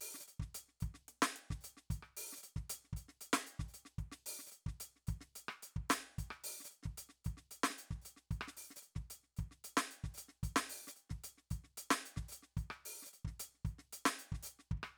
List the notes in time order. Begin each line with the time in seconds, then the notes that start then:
0.01 open hi-hat
0.14 snare
0.20 hi-hat pedal
0.28 closed hi-hat
0.40 kick, snare
0.55 closed hi-hat
0.69 snare
0.80 closed hi-hat, kick
0.94 snare
1.08 closed hi-hat
1.22 snare
1.36 closed hi-hat
1.51 kick, snare
1.61 closed hi-hat, hi-hat pedal
1.77 snare
1.90 closed hi-hat, kick
1.96 kick
2.03 cross-stick
2.17 open hi-hat
2.33 snare
2.38 hi-hat pedal
2.43 closed hi-hat
2.56 kick, snare
2.70 closed hi-hat
2.85 snare
2.93 closed hi-hat, kick
3.09 snare
3.21 closed hi-hat
3.33 snare
3.38 cross-stick
3.47 closed hi-hat
3.60 kick, snare
3.65 kick, hi-hat pedal
3.74 closed hi-hat
3.85 snare
3.98 kick, closed hi-hat
4.12 snare
4.26 open hi-hat
4.39 snare
4.47 hi-hat pedal
4.52 closed hi-hat
4.66 kick, snare
4.80 closed hi-hat
4.96 snare
5.07 closed hi-hat, kick
5.21 snare
5.36 closed hi-hat
5.49 cross-stick
5.63 closed hi-hat
5.76 kick
5.90 closed hi-hat, snare, hi-hat pedal
6.18 closed hi-hat, kick
6.26 kick
6.31 cross-stick
6.44 open hi-hat
6.60 snare
6.65 hi-hat pedal
6.71 closed hi-hat
6.83 kick, snare
6.98 closed hi-hat
7.09 snare
7.25 closed hi-hat, kick
7.37 snare
7.51 closed hi-hat
7.64 snare
7.70 snare
7.78 closed hi-hat
7.91 kick, snare
7.96 kick
8.02 closed hi-hat, hi-hat pedal
8.17 snare
8.31 closed hi-hat, kick
8.41 cross-stick
8.48 snare
8.57 open hi-hat
8.71 snare
8.76 hi-hat pedal
8.82 closed hi-hat
8.95 kick, snare
9.02 kick
9.10 closed hi-hat
9.23 snare
9.37 closed hi-hat, kick
9.51 snare
9.64 closed hi-hat
9.77 snare
9.91 closed hi-hat
10.04 kick, snare
10.14 closed hi-hat, hi-hat pedal
10.29 snare
10.43 closed hi-hat, kick
10.56 snare
10.70 open hi-hat
10.87 snare, hi-hat pedal
10.96 closed hi-hat
11.10 kick, snare
11.24 closed hi-hat
11.38 snare
11.51 closed hi-hat, kick
11.64 snare
11.77 closed hi-hat
11.91 snare
12.05 closed hi-hat
12.16 kick, snare
12.23 kick
12.29 closed hi-hat, hi-hat pedal
12.43 snare
12.57 closed hi-hat, kick
12.70 cross-stick
12.85 open hi-hat
13.02 snare, hi-hat pedal
13.13 closed hi-hat
13.25 kick, snare
13.30 kick
13.40 closed hi-hat
13.55 snare
13.65 closed hi-hat, kick
13.79 snare
13.93 closed hi-hat
14.06 snare
14.19 closed hi-hat
14.32 kick, snare
14.43 closed hi-hat, hi-hat pedal
14.59 snare
14.71 kick
14.77 kick
14.83 cross-stick